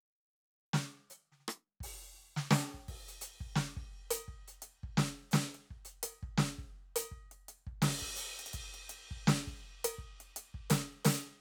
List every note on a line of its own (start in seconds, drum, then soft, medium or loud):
0.73 snare loud
1.10 hi-hat pedal medium
1.32 snare soft
1.40 snare soft
1.48 cross-stick medium
1.80 open hi-hat medium
1.80 kick soft
2.36 snare medium
2.50 snare loud
2.50 hi-hat pedal medium
2.74 kick soft
2.88 kick soft
2.88 crash soft
3.08 closed hi-hat medium
3.21 closed hi-hat medium
3.40 kick medium
3.56 snare loud
3.77 kick medium
4.11 closed hi-hat loud
4.28 kick soft
4.48 closed hi-hat medium
4.62 closed hi-hat medium
4.83 kick medium
4.97 snare loud
5.31 snare loud
5.31 hi-hat pedal medium
5.54 closed hi-hat soft
5.70 kick soft
5.85 closed hi-hat medium
6.03 closed hi-hat loud
6.23 kick medium
6.37 snare loud
6.58 kick soft
6.96 closed hi-hat loud
7.11 kick soft
7.31 closed hi-hat soft
7.48 closed hi-hat medium
7.67 kick medium
7.82 snare loud
7.82 crash medium
7.86 snare medium
8.01 kick soft
8.16 hi-hat pedal medium
8.39 closed hi-hat medium
8.46 closed hi-hat medium
8.53 kick medium
8.53 closed hi-hat medium
8.74 closed hi-hat soft
8.89 closed hi-hat medium
9.11 kick medium
9.27 snare loud
9.47 kick medium
9.84 closed hi-hat loud
9.98 kick soft
10.20 closed hi-hat soft
10.36 closed hi-hat medium
10.54 kick soft
10.70 open hi-hat loud
10.70 snare loud
11.05 open hi-hat loud
11.05 snare loud